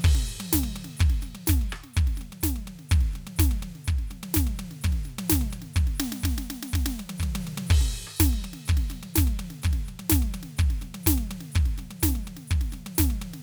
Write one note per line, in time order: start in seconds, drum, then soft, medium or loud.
0.01 kick loud
0.01 hi-hat pedal medium
0.01 crash medium
0.15 snare medium
0.26 hi-hat pedal medium
0.40 high tom loud
0.53 kick medium
0.53 snare loud
0.53 hi-hat pedal medium
0.64 high tom medium
0.71 hi-hat pedal soft
0.76 high tom medium
0.85 snare soft
0.97 kick loud
0.97 hi-hat pedal loud
0.97 high tom medium
1.10 snare soft
1.21 snare soft
1.21 hi-hat pedal medium
1.21 high tom medium
1.35 high tom medium
1.47 kick loud
1.47 snare loud
1.47 hi-hat pedal medium
1.62 high tom soft
1.70 cross-stick medium
1.70 hi-hat pedal medium
1.84 snare soft
1.94 kick loud
1.94 hi-hat pedal medium
1.98 high tom medium
2.08 snare soft
2.16 hi-hat pedal medium
2.21 high tom medium
2.33 high tom medium
2.41 kick medium
2.41 snare loud
2.41 hi-hat pedal medium
2.56 high tom medium
2.68 high tom medium
2.79 snare soft
2.89 kick loud
2.89 hi-hat pedal loud
2.89 high tom medium
3.01 snare soft
3.10 snare soft
3.10 hi-hat pedal soft
3.16 high tom medium
3.27 high tom medium
3.37 kick loud
3.37 snare loud
3.37 hi-hat pedal medium
3.51 high tom medium
3.59 hi-hat pedal soft
3.63 high tom medium
3.75 snare soft
3.85 kick medium
3.85 hi-hat pedal medium
3.85 high tom medium
3.99 snare soft
4.07 snare soft
4.07 hi-hat pedal soft
4.07 high tom medium
4.23 high tom loud
4.34 kick medium
4.34 snare loud
4.34 hi-hat pedal medium
4.47 high tom medium
4.57 hi-hat pedal soft
4.57 high tom loud
4.71 snare soft
4.82 kick medium
4.82 hi-hat pedal medium
4.82 high tom loud
4.93 snare soft
5.04 snare soft
5.04 hi-hat pedal medium
5.19 high tom loud
5.29 kick medium
5.29 snare loud
5.29 hi-hat pedal medium
5.36 snare soft
5.42 high tom medium
5.51 hi-hat pedal medium
5.51 high tom medium
5.62 snare soft
5.74 kick loud
5.74 hi-hat pedal medium
5.74 high tom medium
5.87 snare soft
5.96 hi-hat pedal medium
6.00 snare loud
6.12 snare medium
6.20 hi-hat pedal medium
6.24 kick medium
6.24 snare medium
6.38 snare medium
6.43 hi-hat pedal soft
6.50 snare medium
6.63 snare medium
6.69 hi-hat pedal medium
6.74 kick medium
6.74 snare medium
6.86 snare loud
7.00 high tom medium
7.18 kick medium
7.18 hi-hat pedal medium
7.23 high tom loud
7.36 high tom loud
7.41 hi-hat pedal soft
7.47 high tom medium
7.58 high tom loud
7.67 kick loud
7.67 hi-hat pedal medium
7.67 crash loud
7.81 snare soft
7.90 hi-hat pedal soft
7.96 high tom soft
8.07 cross-stick medium
8.17 kick loud
8.17 snare loud
8.17 hi-hat pedal medium
8.27 snare soft
8.33 high tom soft
8.40 hi-hat pedal soft
8.45 high tom medium
8.54 snare soft
8.66 kick loud
8.66 hi-hat pedal medium
8.66 high tom medium
8.77 snare medium
8.88 snare soft
8.88 hi-hat pedal soft
8.88 high tom medium
9.03 high tom medium
9.14 kick loud
9.14 snare loud
9.14 hi-hat pedal medium
9.28 high tom medium
9.38 hi-hat pedal soft
9.38 high tom loud
9.51 snare soft
9.62 kick loud
9.62 hi-hat pedal medium
9.62 high tom medium
9.73 snare soft
9.85 hi-hat pedal soft
9.85 high tom medium
10.00 high tom medium
10.10 kick loud
10.10 snare loud
10.10 hi-hat pedal medium
10.22 high tom medium
10.33 hi-hat pedal soft
10.33 high tom medium
10.43 snare soft
10.57 kick loud
10.57 hi-hat pedal medium
10.57 high tom medium
10.71 snare soft
10.79 snare soft
10.79 hi-hat pedal soft
10.79 high tom medium
10.95 high tom medium
11.04 kick medium
11.04 snare loud
11.04 hi-hat pedal medium
11.18 high tom medium
11.26 hi-hat pedal soft
11.31 high tom loud
11.41 snare soft
11.52 kick loud
11.52 hi-hat pedal medium
11.52 high tom medium
11.66 snare soft
11.75 snare soft
11.75 hi-hat pedal soft
11.79 high tom medium
11.91 high tom medium
12.00 kick medium
12.00 snare loud
12.00 hi-hat pedal medium
12.09 snare soft
12.16 high tom medium
12.23 hi-hat pedal soft
12.28 high tom medium
12.37 snare soft
12.48 kick loud
12.48 hi-hat pedal medium
12.48 high tom medium
12.61 snare soft
12.70 snare soft
12.70 hi-hat pedal soft
12.70 high tom medium
12.87 high tom medium
12.95 snare loud
12.95 hi-hat pedal medium
13.00 kick loud
13.11 high tom medium
13.18 hi-hat pedal soft
13.22 high tom medium
13.34 snare soft